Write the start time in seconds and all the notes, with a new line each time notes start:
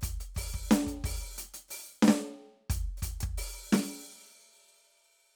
0.01 closed hi-hat, kick, hi-hat pedal
0.20 closed hi-hat
0.35 open hi-hat, kick, hi-hat pedal
0.54 kick
0.69 closed hi-hat, snare, hi-hat pedal
0.87 closed hi-hat, kick
0.99 hi-hat pedal
1.04 open hi-hat, kick
1.36 closed hi-hat, hi-hat pedal
1.54 closed hi-hat
1.68 open hi-hat, hi-hat pedal
2.03 snare, hi-hat pedal
2.08 snare
2.70 open hi-hat, kick
2.97 hi-hat pedal
3.02 closed hi-hat, kick
3.21 kick, closed hi-hat
3.38 open hi-hat
3.73 open hi-hat, snare